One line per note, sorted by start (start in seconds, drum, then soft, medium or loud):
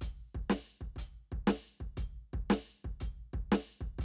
0.01 closed hi-hat loud
0.01 kick medium
0.34 kick medium
0.50 closed hi-hat medium
0.50 snare loud
0.81 kick soft
0.96 closed hi-hat loud
0.96 kick soft
1.32 kick medium
1.47 closed hi-hat loud
1.47 snare loud
1.80 kick medium
1.97 closed hi-hat medium
1.97 kick medium
2.33 kick medium
2.50 closed hi-hat loud
2.50 snare loud
2.84 kick medium
3.00 closed hi-hat medium
3.00 kick medium
3.33 kick medium
3.52 closed hi-hat loud
3.52 snare loud
3.81 kick medium
3.99 closed hi-hat medium
3.99 kick medium